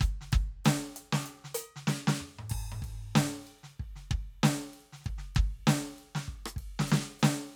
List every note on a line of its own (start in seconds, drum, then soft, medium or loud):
0.01 closed hi-hat medium
0.01 kick loud
0.21 snare soft
0.32 kick loud
0.32 closed hi-hat medium
0.65 open hi-hat loud
0.65 snare loud
0.65 hi-hat pedal medium
0.96 closed hi-hat medium
1.13 snare loud
1.21 hi-hat pedal soft
1.26 closed hi-hat medium
1.44 snare soft
1.44 hi-hat pedal soft
1.55 closed hi-hat loud
1.76 snare medium
1.87 snare loud
1.87 hi-hat pedal medium
2.08 snare loud
2.15 hi-hat pedal soft
2.21 mid tom medium
2.39 high tom medium
2.50 kick medium
2.50 crash medium
2.72 high tom medium
2.82 kick medium
2.82 ride medium
3.16 snare loud
3.16 hi-hat pedal medium
3.42 hi-hat pedal soft
3.47 ride bell soft
3.59 ride soft
3.64 snare soft
3.80 kick medium
3.96 snare soft
4.11 kick loud
4.11 ride bell soft
4.43 snare loud
4.43 hi-hat pedal medium
4.74 ride soft
4.81 ride soft
4.93 snare soft
4.93 hi-hat pedal soft
5.01 snare soft
5.01 ride soft
5.06 kick medium
5.18 snare soft
5.35 kick loud
5.35 ride soft
5.67 snare loud
5.67 hi-hat pedal medium
5.99 ride soft
6.15 snare medium
6.28 kick medium
6.46 cross-stick medium
6.56 kick medium
6.56 ride medium
6.79 snare loud
6.87 hi-hat pedal medium
6.92 snare loud
7.19 snare loud
7.19 hi-hat pedal soft